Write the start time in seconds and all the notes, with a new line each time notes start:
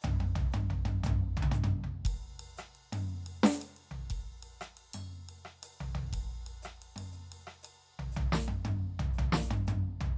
0.01 floor tom, hi-hat pedal, mid tom
0.20 mid tom
0.35 floor tom
0.52 hi-hat pedal, mid tom
0.70 floor tom
0.85 mid tom
1.03 floor tom, hi-hat pedal, mid tom
1.37 floor tom
1.42 high tom
1.51 hi-hat pedal, mid tom
1.64 mid tom
1.84 floor tom
2.05 kick, ride
2.39 ride
2.57 cross-stick, hi-hat pedal
2.75 ride
2.92 mid tom, ride
3.06 hi-hat pedal
3.26 ride
3.43 snare
3.59 hi-hat pedal, ride
3.76 ride
3.91 floor tom
4.10 kick, ride
4.42 ride
4.61 cross-stick, hi-hat pedal
4.77 ride
4.93 mid tom, ride bell
5.29 ride
5.45 cross-stick
5.62 hi-hat pedal, ride
5.80 floor tom
5.90 kick
5.95 floor tom
6.13 kick, ride
6.46 ride
6.62 cross-stick, hi-hat pedal
6.82 ride
6.96 mid tom, ride
7.12 hi-hat pedal
7.32 ride
7.47 cross-stick
7.63 hi-hat pedal, ride
7.99 floor tom
8.12 hi-hat pedal
8.16 floor tom
8.32 snare
8.48 mid tom
8.64 hi-hat pedal, mid tom
8.99 floor tom
9.13 hi-hat pedal
9.18 floor tom
9.32 snare
9.51 mid tom
9.67 hi-hat pedal, mid tom
10.01 floor tom